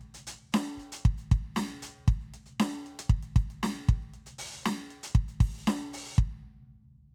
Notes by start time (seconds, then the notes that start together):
0.01 closed hi-hat
0.14 closed hi-hat
0.27 open hi-hat
0.39 open hi-hat
0.52 snare, hi-hat pedal
0.66 closed hi-hat
0.77 closed hi-hat, kick
0.92 closed hi-hat
1.05 kick, closed hi-hat
1.18 closed hi-hat
1.31 open hi-hat, kick
1.55 snare, hi-hat pedal
1.68 closed hi-hat
1.82 closed hi-hat
2.08 closed hi-hat, kick
2.21 closed hi-hat
2.34 closed hi-hat
2.46 closed hi-hat
2.60 snare
2.74 closed hi-hat
2.86 closed hi-hat
2.99 closed hi-hat
3.10 kick, closed hi-hat
3.23 closed hi-hat
3.36 closed hi-hat, kick
3.50 closed hi-hat
3.63 snare
3.76 closed hi-hat
3.89 kick, closed hi-hat
4.02 closed hi-hat
4.14 closed hi-hat
4.26 closed hi-hat
4.38 open hi-hat
4.53 open hi-hat
4.62 snare, hi-hat pedal
4.78 closed hi-hat
4.91 closed hi-hat
5.03 closed hi-hat
5.15 kick, closed hi-hat
5.28 closed hi-hat
5.40 open hi-hat, kick
5.56 open hi-hat
5.66 snare, hi-hat pedal
5.81 closed hi-hat
5.93 open hi-hat
6.16 kick, hi-hat pedal